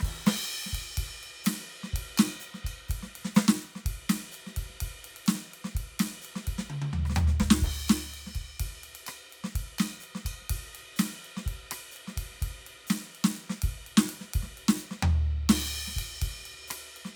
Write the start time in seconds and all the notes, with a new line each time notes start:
0.01 kick, cross-stick
0.06 hi-hat pedal, crash
0.27 snare, crash
0.67 snare
0.74 kick, hi-hat pedal, ride
0.98 kick, ride
1.06 kick
1.24 ride
1.45 snare, hi-hat pedal, ride
1.73 ride
1.84 snare
1.94 kick, hi-hat pedal, ride
2.19 snare, ride bell
2.41 hi-hat pedal
2.46 ride
2.55 snare
2.65 kick, ride bell
2.89 kick, hi-hat pedal, ride
2.97 kick
3.04 snare
3.16 ride
3.26 snare
3.36 snare, hi-hat pedal
3.49 snare
3.63 ride
3.76 snare
3.87 kick, hi-hat pedal, ride
3.93 kick
3.95 kick
4.11 snare, ride
4.33 hi-hat pedal, ride
4.48 snare
4.57 kick, ride
4.70 snare
4.77 snare
4.82 kick, hi-hat pedal, ride
5.05 ride
5.17 ride
5.28 snare, hi-hat pedal
5.36 snare
5.55 ride
5.65 snare
5.76 kick, hi-hat pedal, ride
5.82 kick
6.00 snare, ride
6.23 hi-hat pedal, ride
6.37 snare
6.48 kick, ride
6.59 snare
6.68 kick, mid tom
6.83 mid tom
6.94 floor tom
7.06 cross-stick
7.11 snare
7.16 hi-hat pedal, floor tom
7.28 snare
7.41 kick, snare
7.51 snare
7.63 kick, hi-hat pedal, crash
7.70 kick
7.89 snare, ride bell
7.98 snare
8.15 ride
8.28 snare
8.36 kick, ride bell
8.61 kick, ride
8.67 kick
8.85 ride
8.96 ride
9.07 cross-stick, hi-hat pedal, ride bell
9.30 hi-hat pedal, ride
9.45 snare
9.56 kick, ride
9.62 kick
9.80 snare, ride bell
10.01 hi-hat pedal, ride
10.16 snare
10.26 kick, ride bell
10.42 snare
10.50 kick, hi-hat pedal, ride
10.76 ride
10.97 snare, hi-hat pedal, ride
11.26 ride
11.38 snare
11.47 kick, hi-hat pedal, ride
11.55 kick
11.72 cross-stick, ride
11.92 hi-hat pedal
11.97 ride
12.09 snare
12.18 kick, ride
12.32 snare
12.38 snare, hi-hat pedal
12.43 kick, snare, ride
12.49 kick
12.51 kick
12.68 ride
12.88 snare, hi-hat pedal, ride
13.16 ride
13.25 snare
13.38 ride
13.51 snare
13.63 kick, ride
13.72 kick
13.76 kick
13.88 ride
13.98 snare
14.10 hi-hat pedal, ride
14.22 snare
14.35 kick, ride
14.43 kick, snare
14.58 ride
14.69 snare
14.78 hi-hat pedal
14.82 ride bell
14.92 snare
15.04 floor tom
15.50 snare, crash
15.88 snare
15.97 kick, hi-hat pedal, ride
16.03 kick
16.23 kick, ride
16.34 snare
16.40 snare
16.47 ride
16.69 cross-stick, hi-hat pedal, ride
16.97 ride
17.06 snare